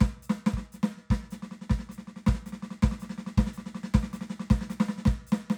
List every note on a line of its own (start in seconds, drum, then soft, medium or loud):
0.01 kick loud
0.01 snare loud
0.23 hi-hat pedal medium
0.30 snare loud
0.47 snare loud
0.54 kick medium
0.54 snare medium
0.72 snare soft
0.72 hi-hat pedal medium
0.83 snare loud
0.97 snare soft
1.11 kick loud
1.11 snare loud
1.23 snare soft
1.31 snare medium
1.31 hi-hat pedal medium
1.43 snare medium
1.51 snare medium
1.62 snare medium
1.70 kick loud
1.70 snare medium
1.79 snare medium
1.89 snare soft
1.89 hi-hat pedal medium
1.98 snare medium
2.08 snare soft
2.16 snare soft
2.27 kick loud
2.27 snare loud
2.34 snare medium
2.46 snare medium
2.46 hi-hat pedal medium
2.53 snare medium
2.71 snare medium
2.83 kick loud
2.83 snare loud
2.92 snare medium
3.00 snare medium
3.00 hi-hat pedal medium
3.10 snare medium
3.18 snare medium
3.27 snare medium
3.38 kick loud
3.38 snare loud
3.47 snare medium
3.54 hi-hat pedal medium
3.58 snare medium
3.66 snare medium
3.75 snare medium
3.84 snare medium
3.94 kick loud
3.94 snare loud
4.03 snare medium
4.13 hi-hat pedal medium
4.21 snare medium
4.30 snare medium
4.40 snare medium
4.51 kick loud
4.51 snare loud
4.61 snare medium
4.70 snare medium
4.70 hi-hat pedal medium
4.80 snare loud
4.89 snare medium
4.98 snare medium
5.06 kick loud
5.06 snare loud
5.27 hi-hat pedal medium
5.32 snare loud
5.50 snare loud